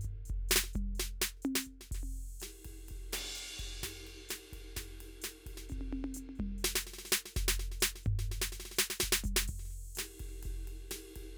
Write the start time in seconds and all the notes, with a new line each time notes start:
0.01 kick, hi-hat pedal
0.10 kick
0.25 hi-hat pedal
0.30 kick
0.36 kick
0.49 snare, hi-hat pedal
0.56 snare
0.64 snare
0.73 kick, hi-hat pedal, mid tom
0.82 kick
0.95 hi-hat pedal
1.00 snare
1.22 snare, hi-hat pedal
1.37 snare
1.42 hi-hat pedal, high tom
1.55 snare
1.62 hi-hat pedal
1.67 kick
1.81 snare
1.91 kick, snare, hi-hat pedal, crash
1.98 kick
2.03 high tom
2.40 snare, hi-hat pedal, ride
2.65 kick, ride
2.71 kick
2.88 kick, hi-hat pedal, ride
2.96 kick
3.13 snare, ride
3.35 hi-hat pedal, ride
3.59 kick, ride
3.65 kick
3.82 kick, snare, hi-hat pedal, ride
4.02 snare
4.07 ride
4.29 snare, hi-hat pedal, ride
4.53 kick, ride
4.58 kick
4.76 kick, snare, hi-hat pedal, ride
4.82 kick
4.97 snare, ride
5.22 snare, hi-hat pedal, ride
5.46 kick, ride
5.52 kick
5.57 snare
5.69 kick, hi-hat pedal, high tom
5.78 kick, high tom
5.93 high tom
6.04 high tom
6.14 hi-hat pedal, high tom
6.29 high tom
6.35 kick, hi-hat pedal
6.40 mid tom
6.58 hi-hat pedal
6.64 snare
6.75 snare
6.82 hi-hat pedal
6.87 snare
6.94 snare
6.98 snare
7.05 snare, hi-hat pedal
7.12 snare
7.26 snare
7.34 kick, snare, hi-hat pedal
7.47 kick, snare
7.59 snare
7.72 snare
7.80 snare, hi-hat pedal
7.95 snare
8.03 kick, hi-hat pedal, floor tom
8.19 snare
8.25 hi-hat pedal
8.31 snare
8.42 snare
8.52 snare, hi-hat pedal
8.60 snare
8.65 snare
8.71 snare
8.76 snare, hi-hat pedal
8.90 snare
8.99 kick, snare, hi-hat pedal
9.09 kick, snare
9.24 kick, hi-hat pedal, mid tom
9.32 kick, snare
9.42 snare
9.48 kick, crash
9.56 kick, snare
9.65 snare
9.70 snare
9.95 snare, hi-hat pedal, ride
10.20 kick, ride
10.26 kick
10.43 kick, hi-hat pedal, ride
10.51 kick
10.62 snare
10.65 snare, ride
10.91 snare, hi-hat pedal, ride
11.16 kick, ride
11.21 kick